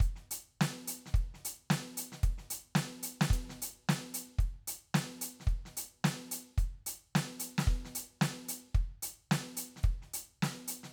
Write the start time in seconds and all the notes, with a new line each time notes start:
0.01 closed hi-hat, kick
0.16 snare
0.32 closed hi-hat
0.62 snare
0.88 closed hi-hat
1.07 snare
1.15 kick, closed hi-hat
1.35 snare
1.46 closed hi-hat
1.71 snare
1.98 closed hi-hat
2.13 snare
2.24 kick, closed hi-hat
2.39 snare
2.51 closed hi-hat
2.76 snare
3.04 closed hi-hat
3.22 snare
3.31 kick, closed hi-hat
3.50 snare
3.63 closed hi-hat
3.90 snare
4.15 closed hi-hat
4.39 kick, closed hi-hat
4.68 closed hi-hat
4.95 snare
5.22 closed hi-hat
5.41 snare
5.48 kick, closed hi-hat
5.66 snare
5.78 closed hi-hat
6.05 snare
6.32 closed hi-hat
6.59 closed hi-hat, kick
6.87 closed hi-hat
7.16 snare
7.41 closed hi-hat
7.59 snare
7.68 kick
7.86 snare
7.96 closed hi-hat
8.22 snare
8.49 closed hi-hat
8.75 kick, closed hi-hat
9.03 closed hi-hat
9.32 snare
9.58 closed hi-hat
9.77 snare
9.84 kick, closed hi-hat
10.03 snare
10.14 closed hi-hat
10.43 snare
10.69 closed hi-hat
10.84 snare